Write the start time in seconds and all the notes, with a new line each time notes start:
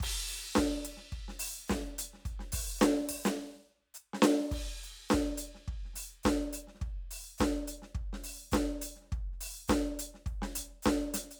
0.00 kick, hi-hat pedal, crash
0.28 open hi-hat
0.54 kick, snare, hi-hat pedal
0.85 closed hi-hat
0.97 snare
1.12 kick, closed hi-hat
1.28 snare
1.39 open hi-hat
1.68 kick, snare, hi-hat pedal
1.98 closed hi-hat
2.13 snare
2.18 snare
2.21 closed hi-hat, kick, snare
2.39 snare
2.52 open hi-hat, kick
2.78 snare, hi-hat pedal
3.09 kick, open hi-hat
3.24 snare, hi-hat pedal
3.94 hi-hat pedal
4.13 snare
4.22 snare
4.39 snare
4.51 kick, crash
4.83 open hi-hat
5.09 snare, hi-hat pedal
5.13 kick
5.37 closed hi-hat
5.55 snare
5.68 kick
5.85 snare
5.93 open hi-hat, snare
6.23 kick, snare, hi-hat pedal
6.53 open hi-hat
6.67 snare
6.74 snare
6.80 kick, snare, closed hi-hat
7.11 open hi-hat
7.38 kick, snare, hi-hat pedal
7.67 closed hi-hat
7.82 snare
7.95 kick, closed hi-hat
8.13 snare
8.23 open hi-hat
8.51 kick, snare, hi-hat pedal
8.81 open hi-hat
8.95 snare
9.00 snare
9.04 snare
9.08 snare
9.11 kick, snare, closed hi-hat
9.32 snare
9.39 open hi-hat, snare
9.68 kick, snare, hi-hat pedal
9.99 closed hi-hat
10.14 snare
10.26 kick, closed hi-hat
10.42 snare
10.55 closed hi-hat, kick
10.82 kick, snare, hi-hat pedal
11.14 closed hi-hat, snare
11.31 closed hi-hat